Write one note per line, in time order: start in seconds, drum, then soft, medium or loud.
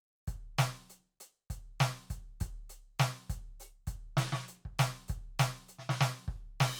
0.27 closed hi-hat medium
0.27 kick medium
0.58 closed hi-hat medium
0.58 snare loud
0.90 closed hi-hat medium
1.20 closed hi-hat medium
1.50 closed hi-hat medium
1.50 kick medium
1.80 closed hi-hat medium
1.80 snare loud
2.10 closed hi-hat medium
2.10 kick medium
2.40 closed hi-hat medium
2.40 kick medium
2.69 closed hi-hat medium
2.99 closed hi-hat medium
2.99 snare loud
3.30 open hi-hat medium
3.30 kick medium
3.60 open hi-hat medium
3.60 hi-hat pedal medium
3.87 closed hi-hat medium
3.87 kick medium
4.17 closed hi-hat medium
4.17 snare loud
4.17 hi-hat pedal soft
4.32 snare loud
4.48 closed hi-hat medium
4.65 kick soft
4.79 closed hi-hat loud
4.79 snare loud
5.08 closed hi-hat medium
5.08 kick medium
5.39 closed hi-hat loud
5.39 snare loud
5.66 closed hi-hat medium
5.66 hi-hat pedal soft
5.79 snare soft
5.89 snare loud
6.01 snare loud
6.28 kick medium
6.60 snare loud
6.60 crash loud